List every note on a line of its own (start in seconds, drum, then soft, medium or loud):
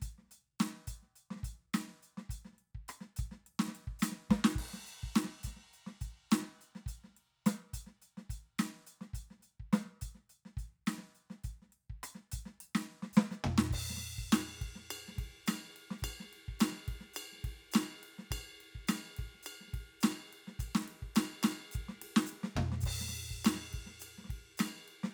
0.01 closed hi-hat medium
0.01 kick soft
0.01 snare soft
0.08 kick soft
0.19 snare soft
0.23 snare soft
0.28 snare soft
0.31 closed hi-hat soft
0.31 snare soft
0.60 closed hi-hat medium
0.60 snare loud
0.74 snare soft
0.88 closed hi-hat medium
0.88 kick soft
1.03 snare soft
1.16 closed hi-hat soft
1.31 snare soft
1.37 snare soft
1.44 closed hi-hat medium
1.44 kick soft
1.50 kick soft
1.74 closed hi-hat medium
1.74 snare loud
1.88 snare soft
2.03 closed hi-hat soft
2.18 snare soft
2.30 closed hi-hat medium
2.30 kick soft
2.45 snare soft
2.53 snare soft
2.59 closed hi-hat soft
2.75 kick soft
2.89 open hi-hat medium
2.89 cross-stick medium
3.01 snare soft
3.17 closed hi-hat medium
3.17 kick medium
3.26 kick soft
3.32 snare soft
3.47 closed hi-hat soft
3.60 snare loud
3.68 snare soft
3.76 closed hi-hat soft
3.88 kick soft
4.00 closed hi-hat loud
4.00 snare loud
4.00 hi-hat pedal medium
4.12 snare soft
4.30 kick soft
4.30 snare loud
4.45 snare loud
4.50 hi-hat pedal medium
4.56 kick medium
4.56 crash medium
4.63 kick soft
4.74 snare soft
4.83 closed hi-hat soft
4.83 snare soft
5.04 kick soft
5.16 open hi-hat medium
5.16 snare loud
5.25 snare soft
5.44 closed hi-hat medium
5.44 kick soft
5.44 snare soft
5.57 snare soft
5.74 closed hi-hat soft
5.87 snare soft
6.02 closed hi-hat medium
6.02 kick soft
6.08 kick soft
6.31 open hi-hat medium
6.31 snare loud
6.31 hi-hat pedal soft
6.42 snare soft
6.62 closed hi-hat soft
6.76 snare soft
6.87 closed hi-hat medium
6.87 kick soft
7.05 snare soft
7.10 snare soft
7.14 snare soft
7.14 closed hi-hat soft
7.47 closed hi-hat medium
7.47 snare loud
7.74 closed hi-hat medium
7.74 kick soft
7.87 snare soft
8.02 closed hi-hat soft
8.18 snare soft
8.30 closed hi-hat medium
8.30 kick soft
8.59 closed hi-hat medium
8.59 snare loud
8.87 closed hi-hat soft
9.02 snare soft
9.14 closed hi-hat medium
9.14 kick soft
9.31 snare soft
9.40 closed hi-hat soft
9.40 snare soft
9.60 kick soft
9.73 closed hi-hat medium
9.73 snare loud
9.86 snare soft
10.02 closed hi-hat medium
10.02 kick soft
10.15 snare soft
10.30 closed hi-hat soft
10.46 snare soft
10.58 closed hi-hat soft
10.58 kick soft
10.63 kick soft
10.87 closed hi-hat soft
10.87 snare medium
10.99 snare soft
11.15 closed hi-hat soft
11.31 snare soft
11.44 closed hi-hat soft
11.44 kick soft
11.51 kick soft
11.63 snare soft
11.70 snare soft
11.70 closed hi-hat soft
11.90 kick soft
12.04 closed hi-hat medium
12.04 cross-stick medium
12.15 snare soft
12.32 closed hi-hat medium
12.32 kick soft
12.39 kick soft
12.46 snare soft
12.61 hi-hat pedal soft
12.61 open hi-hat medium
12.76 snare loud
13.03 snare soft
13.13 kick soft
13.13 hi-hat pedal medium
13.18 snare loud
13.32 snare soft
13.32 hi-hat pedal soft
13.45 kick soft
13.45 floor tom loud
13.58 snare loud
13.71 kick medium
13.71 crash loud
13.78 kick soft
13.90 snare soft
13.98 snare soft
14.19 kick soft
14.33 snare loud
14.33 hi-hat pedal medium
14.33 ride bell loud
14.62 kick soft
14.62 ride soft
14.68 kick soft
14.76 snare soft
14.91 hi-hat pedal soft
14.91 ride bell loud
15.09 snare soft
15.17 kick soft
15.17 snare soft
15.17 ride medium
15.25 kick soft
15.28 kick soft
15.47 snare loud
15.47 hi-hat pedal medium
15.47 ride bell loud
15.77 ride soft
15.91 snare medium
15.99 kick soft
15.99 hi-hat pedal soft
16.05 ride bell loud
16.09 kick soft
16.20 snare soft
16.34 ride soft
16.49 kick soft
16.60 snare loud
16.60 hi-hat pedal medium
16.60 ride bell loud
16.73 snare soft
16.88 kick soft
16.88 ride medium
16.95 kick soft
16.97 kick soft
16.97 snare soft
17.14 hi-hat pedal medium
17.14 ride bell loud
17.33 snare soft
17.39 snare soft
17.45 kick soft
17.45 ride medium
17.53 kick soft
17.72 snare loud
17.72 hi-hat pedal medium
17.72 ride bell loud
18.04 ride medium
18.19 snare soft
18.31 kick soft
18.31 ride bell loud
18.37 kick soft
18.40 kick soft
18.61 ride soft
18.76 kick soft
18.88 snare loud
18.88 hi-hat pedal medium
18.88 ride bell loud
19.17 kick soft
19.17 ride medium
19.25 kick soft
19.28 kick soft
19.35 snare soft
19.43 hi-hat pedal medium
19.43 ride bell loud
19.61 snare soft
19.68 snare soft
19.74 kick soft
19.74 ride soft
19.80 kick soft
20.01 snare loud
20.01 hi-hat pedal medium
20.01 ride bell loud
20.33 ride soft
20.48 snare soft
20.60 kick soft
20.60 hi-hat pedal medium
20.60 ride bell medium
20.66 kick soft
20.69 kick soft
20.76 snare loud
20.88 ride medium
21.03 kick soft
21.16 snare loud
21.16 hi-hat pedal medium
21.16 ride bell loud
21.44 snare loud
21.44 ride bell loud
21.72 kick soft
21.72 hi-hat pedal medium
21.72 ride soft
21.82 kick soft
21.85 kick soft
21.89 snare soft
21.97 kick soft
22.02 ride medium
22.17 snare loud
22.27 hi-hat pedal medium
22.27 ride medium
22.44 snare medium
22.56 kick soft
22.56 floor tom loud
22.73 snare soft
22.81 kick medium
22.81 hi-hat pedal medium
22.86 crash loud
22.91 kick soft
22.94 kick soft
23.01 snare soft
23.09 snare soft
23.16 ride soft
23.31 kick soft
23.45 snare loud
23.45 hi-hat pedal medium
23.45 ride bell loud
23.56 snare soft
23.74 kick soft
23.74 ride soft
23.87 snare soft
24.00 hi-hat pedal medium
24.00 ride bell medium
24.19 snare soft
24.25 snare soft
24.30 kick soft
24.30 ride soft
24.58 snare loud
24.58 hi-hat pedal medium
24.58 ride bell loud
24.89 ride soft
25.04 snare medium